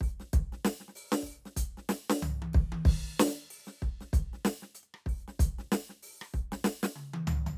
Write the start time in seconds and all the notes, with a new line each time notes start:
0.01 kick, open hi-hat
0.08 hi-hat pedal
0.20 snare
0.33 kick, closed hi-hat
0.53 snare
0.65 snare
0.80 snare
0.88 snare
0.96 open hi-hat
1.05 open hi-hat
1.12 snare
1.23 kick
1.27 open hi-hat
1.33 hi-hat pedal
1.46 snare
1.57 closed hi-hat, kick
1.78 snare
1.89 snare
1.93 hi-hat pedal
2.10 snare
2.17 hi-hat pedal
2.23 floor tom
2.42 high tom
2.54 kick, ride
2.72 high tom
2.85 kick, crash
3.20 snare, hi-hat pedal
3.28 snare
3.51 open hi-hat
3.67 snare
3.82 kick, closed hi-hat
4.01 snare
4.13 closed hi-hat, kick
4.34 snare
4.45 snare
4.63 snare
4.75 closed hi-hat
4.83 open hi-hat
4.94 cross-stick
5.06 kick, snare, open hi-hat
5.20 hi-hat pedal
5.28 snare
5.40 closed hi-hat, kick
5.59 kick, snare
5.72 snare
5.90 snare
6.03 open hi-hat
6.22 cross-stick
6.34 kick, open hi-hat
6.52 snare
6.60 kick
6.65 snare
6.83 snare
6.96 mid tom
7.14 high tom
7.28 floor tom
7.47 floor tom